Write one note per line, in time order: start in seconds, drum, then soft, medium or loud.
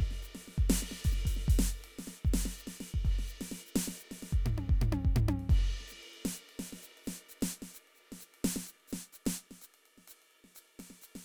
0.01 kick medium
0.01 ride soft
0.11 snare soft
0.23 hi-hat pedal medium
0.23 ride soft
0.35 snare soft
0.35 ride medium
0.47 snare soft
0.47 ride soft
0.59 kick medium
0.70 snare loud
0.70 ride medium
0.83 snare soft
0.92 snare soft
1.05 open hi-hat medium
1.05 kick medium
1.11 snare soft
1.11 hi-hat pedal medium
1.26 open hi-hat medium
1.26 kick medium
1.32 hi-hat pedal medium
1.37 snare soft
1.49 open hi-hat medium
1.49 kick medium
1.59 snare medium
1.85 ride medium
1.99 snare soft
1.99 ride medium
2.08 snare soft
2.08 ride soft
2.25 kick medium
2.25 hi-hat pedal soft
2.34 snare medium
2.34 ride medium
2.46 snare medium
2.56 hi-hat pedal medium
2.56 ride soft
2.68 snare soft
2.68 ride soft
2.81 snare soft
2.81 ride soft
2.95 kick medium
3.05 kick medium
3.05 ride medium
3.19 snare soft
3.28 hi-hat pedal medium
3.28 ride soft
3.42 snare medium
3.42 ride soft
3.52 snare soft
3.52 ride soft
3.66 hi-hat pedal medium
3.76 snare loud
3.76 ride soft
3.88 snare medium
3.99 hi-hat pedal medium
3.99 ride soft
4.12 snare soft
4.12 ride soft
4.23 snare soft
4.23 ride soft
4.33 kick medium
4.46 floor tom loud
4.58 high tom medium
4.70 kick medium
4.82 floor tom loud
4.93 high tom loud
5.05 kick medium
5.17 floor tom loud
5.29 high tom loud
5.40 ride soft
5.50 kick medium
5.50 ride medium
5.81 snare soft
5.88 snare soft
5.88 hi-hat pedal medium
5.88 ride medium
6.04 hi-hat pedal soft
6.04 ride medium
6.14 ride medium
6.26 snare medium
6.35 hi-hat pedal medium
6.35 ride soft
6.50 ride medium
6.60 snare medium
6.60 ride soft
6.73 snare soft
6.83 hi-hat pedal medium
6.83 ride medium
6.98 ride medium
7.04 hi-hat pedal soft
7.08 snare medium
7.08 ride medium
7.29 hi-hat pedal medium
7.29 ride medium
7.42 snare medium
7.42 ride soft
7.53 ride soft
7.63 snare soft
7.74 hi-hat pedal medium
7.74 ride medium
7.88 ride soft
7.95 hi-hat pedal soft
8.00 ride soft
8.13 snare soft
8.20 hi-hat pedal medium
8.20 ride medium
8.35 ride medium
8.45 snare loud
8.45 ride medium
8.57 snare medium
8.67 hi-hat pedal medium
8.67 ride medium
8.81 ride soft
8.88 hi-hat pedal medium
8.92 snare medium
8.92 ride soft
9.13 hi-hat pedal medium
9.13 ride medium
9.26 snare medium
9.26 ride medium
9.37 ride soft
9.52 snare soft
9.62 hi-hat pedal medium
9.62 ride medium
9.75 ride medium
9.86 ride soft
9.98 snare soft
10.08 hi-hat pedal medium
10.08 ride medium
10.23 ride soft
10.32 ride soft
10.45 snare soft
10.51 snare soft
10.56 hi-hat pedal medium
10.56 ride medium
10.80 snare soft
10.80 ride medium
10.91 snare soft
11.02 hi-hat pedal medium
11.02 ride medium
11.16 snare soft
11.16 ride medium